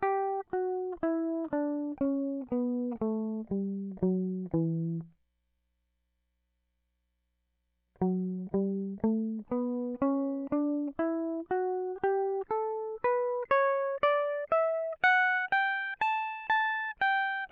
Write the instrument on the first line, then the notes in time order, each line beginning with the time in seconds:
electric guitar
0.03 G4
0.54 F#4
1.03 E4
1.53 D4
2.02 C#4
2.52 B3
3.02 A3
3.52 G3
3.94 F#3
4.03 F#3
4.55 E3
8.02 F#3
8.55 G3
9.04 A3
9.52 B3
10.02 C#4
10.53 D4
11.00 E4
11.51 F#4
12.04 G4
12.51 A4
13.05 B4
13.51 C#5
14.03 D5
14.52 E5
15.04 F#5
15.53 G5
16.02 A5
16.50 A5
17.02 G5